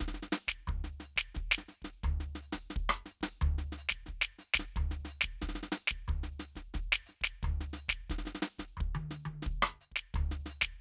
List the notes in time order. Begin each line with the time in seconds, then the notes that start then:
0.01 kick, snare
0.09 snare
0.15 snare
0.23 snare
0.33 snare, hi-hat pedal
0.48 kick, snare
0.68 kick, floor tom
0.85 snare
1.01 snare, hi-hat pedal
1.17 kick, snare
1.35 kick, snare
1.52 snare
1.59 snare
1.69 snare, hi-hat pedal
1.83 kick, snare
2.04 kick, floor tom
2.21 snare
2.36 snare
2.43 hi-hat pedal
2.53 kick, snare
2.71 snare
2.77 kick
2.90 cross-stick
3.06 snare, hi-hat pedal
3.22 kick, snare
3.42 kick, floor tom
3.59 snare
3.73 snare
3.79 hi-hat pedal
3.90 kick, snare
4.07 kick, snare
4.22 snare
4.39 snare, hi-hat pedal
4.54 kick, snare
4.60 snare
4.77 kick, floor tom
4.92 snare
5.06 snare, hi-hat pedal
5.22 kick, snare
5.42 kick, snare
5.50 snare
5.56 snare
5.64 snare
5.73 snare, hi-hat pedal
5.88 kick, snare
6.09 kick, floor tom
6.24 snare
6.40 snare, hi-hat pedal
6.56 kick, snare
6.75 kick, snare
6.93 snare
7.07 snare, hi-hat pedal
7.22 kick, snare
7.44 kick, floor tom
7.61 snare
7.74 snare, hi-hat pedal
7.89 kick, snare
8.11 kick, snare
8.19 snare
8.26 snare
8.28 snare
8.36 snare
8.43 snare, hi-hat pedal
8.59 kick, snare
8.78 kick, floor tom
8.96 high tom
9.12 snare, hi-hat pedal
9.26 kick, high tom
9.43 kick, snare
9.63 cross-stick
9.82 hi-hat pedal
9.92 kick
9.97 snare
10.15 kick, floor tom
10.32 snare
10.47 snare, hi-hat pedal
10.62 kick, snare